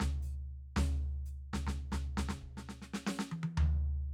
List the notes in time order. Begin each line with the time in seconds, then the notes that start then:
0.00 snare, floor tom
0.22 hi-hat pedal
0.76 snare, floor tom
1.26 hi-hat pedal
1.53 snare, floor tom
1.66 snare, floor tom
1.92 snare, floor tom
2.17 snare, floor tom
2.29 snare, floor tom
2.41 kick
2.57 snare
2.69 snare
2.82 snare
2.93 snare
3.06 snare
3.19 snare
3.31 closed hi-hat, high tom
3.43 high tom
3.57 floor tom